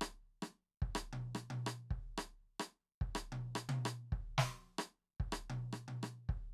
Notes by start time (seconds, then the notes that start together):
0.01 cross-stick
0.42 cross-stick
0.82 kick
0.95 cross-stick
1.13 high tom
1.35 cross-stick
1.50 high tom
1.66 cross-stick
1.91 kick
2.18 cross-stick
2.60 cross-stick
3.01 kick
3.15 cross-stick
3.32 high tom
3.55 cross-stick
3.69 high tom
3.85 cross-stick
4.12 kick
4.38 snare
4.78 cross-stick
5.20 kick
5.32 cross-stick
5.50 high tom
5.73 cross-stick
5.88 high tom
6.03 cross-stick
6.29 kick